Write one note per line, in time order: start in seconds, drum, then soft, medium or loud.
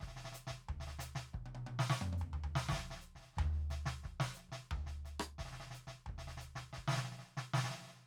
0.01 kick soft
0.01 snare soft
0.08 snare soft
0.13 snare soft
0.17 snare soft
0.25 snare soft
0.32 snare soft
0.32 hi-hat pedal medium
0.47 kick soft
0.47 snare medium
0.69 kick soft
0.69 floor tom medium
0.81 snare soft
0.88 snare soft
0.99 snare medium
0.99 hi-hat pedal loud
1.16 snare medium
1.34 kick soft
1.34 high tom soft
1.46 high tom medium
1.55 high tom medium
1.67 high tom medium
1.80 snare medium
1.90 snare loud
1.97 hi-hat pedal soft
2.02 mid tom loud
2.13 mid tom medium
2.18 floor tom medium
2.18 hi-hat pedal soft
2.34 floor tom medium
2.44 floor tom medium
2.56 snare medium
2.69 kick medium
2.69 snare medium
2.74 snare medium
2.78 snare soft
2.83 snare soft
2.91 snare soft
2.96 snare soft
3.02 hi-hat pedal soft
3.16 kick soft
3.16 snare soft
3.21 snare soft
3.26 snare soft
3.30 snare soft
3.34 kick soft
3.34 snare soft
3.38 snare soft
3.38 floor tom loud
3.53 snare soft
3.56 snare soft
3.60 snare soft
3.71 snare soft
3.71 hi-hat pedal soft
3.86 kick soft
3.86 snare medium
4.04 kick soft
4.04 snare soft
4.21 snare medium
4.35 snare soft
4.35 hi-hat pedal medium
4.50 kick soft
4.50 snare medium
4.71 kick soft
4.71 floor tom medium
4.87 snare soft
5.05 snare soft
5.05 hi-hat pedal soft
5.20 kick soft
5.20 cross-stick medium
5.39 kick soft
5.39 snare soft
5.46 snare soft
5.51 snare soft
5.53 snare soft
5.61 snare soft
5.67 snare soft
5.71 snare soft
5.75 hi-hat pedal medium
5.88 kick soft
5.88 snare soft
6.07 kick soft
6.07 floor tom medium
6.19 snare soft
6.28 snare soft
6.38 snare soft
6.38 hi-hat pedal medium
6.56 kick soft
6.56 snare medium
6.73 snare medium
6.78 kick soft
6.88 snare medium
6.91 snare medium
6.93 snare medium
6.98 snare medium
7.05 snare soft
7.12 snare soft
7.19 snare soft
7.25 snare soft
7.31 snare soft
7.37 snare soft
7.37 snare medium
7.54 snare medium
7.58 snare medium
7.64 snare medium
7.70 snare soft
7.70 snare medium
7.77 snare soft
7.82 snare soft
7.87 snare soft
7.92 snare soft
7.96 snare soft
8.00 snare soft
8.04 snare soft